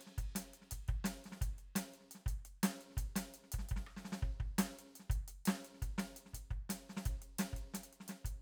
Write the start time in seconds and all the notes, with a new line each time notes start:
0.01 closed hi-hat
0.07 snare
0.18 kick, closed hi-hat
0.35 snare, closed hi-hat
0.54 closed hi-hat
0.62 snare
0.71 kick, closed hi-hat
0.88 kick, closed hi-hat
1.04 snare, closed hi-hat
1.24 snare, closed hi-hat
1.32 snare
1.41 kick, closed hi-hat
1.58 closed hi-hat
1.76 snare, closed hi-hat
1.94 closed hi-hat
2.01 snare
2.11 snare, closed hi-hat
2.26 kick, closed hi-hat
2.45 closed hi-hat
2.63 snare, closed hi-hat
2.81 closed hi-hat
2.91 snare
2.97 kick, closed hi-hat
3.16 snare, closed hi-hat
3.34 closed hi-hat
3.44 snare
3.52 kick, closed hi-hat
3.59 snare
3.69 kick, closed hi-hat
3.76 snare
3.87 cross-stick
3.97 snare
4.05 snare
4.12 snare
4.22 kick
4.40 kick
4.58 snare, closed hi-hat
4.79 closed hi-hat
4.86 snare
4.96 closed hi-hat
5.00 snare
5.10 kick, closed hi-hat
5.28 closed hi-hat
5.46 snare, closed hi-hat
5.65 closed hi-hat
5.74 snare
5.82 kick, closed hi-hat
5.98 snare, closed hi-hat
6.16 closed hi-hat
6.26 snare
6.34 kick, closed hi-hat
6.51 kick, closed hi-hat
6.70 snare, closed hi-hat
6.90 snare, closed hi-hat
6.97 snare
7.06 kick, closed hi-hat
7.22 closed hi-hat
7.39 snare, closed hi-hat
7.53 kick, closed hi-hat
7.74 snare, closed hi-hat
7.84 closed hi-hat
7.93 closed hi-hat
8.00 snare
8.08 snare, closed hi-hat
8.25 kick, closed hi-hat